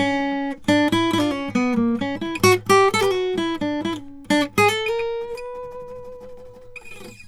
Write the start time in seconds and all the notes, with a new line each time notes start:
0.00 C#4
0.70 D4
0.94 E4
1.12 E4
1.21 D4
1.33 C#4
1.57 B3
1.74 A#3
2.03 C#4
2.23 E4
2.45 F#4
2.71 G4
2.96 G#4
3.12 F#4
3.22 F#4
3.39 E4
3.63 D4
3.87 E4
3.96 C#4
4.32 D4
4.59 G#4
4.70 A4
4.90 A#4
5.36 B4